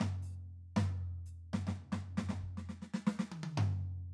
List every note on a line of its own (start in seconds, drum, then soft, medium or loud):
0.00 snare medium
0.00 floor tom loud
0.22 hi-hat pedal soft
0.76 snare medium
0.76 floor tom loud
1.26 hi-hat pedal soft
1.53 snare medium
1.53 floor tom medium
1.67 snare medium
1.67 floor tom medium
1.92 snare medium
1.92 floor tom medium
2.17 snare medium
2.17 floor tom medium
2.29 snare medium
2.29 floor tom medium
2.41 kick soft
2.57 snare soft
2.69 snare soft
2.82 snare soft
2.94 snare medium
3.07 snare medium
3.19 snare medium
3.31 closed hi-hat soft
3.31 high tom medium
3.43 high tom medium
3.57 floor tom loud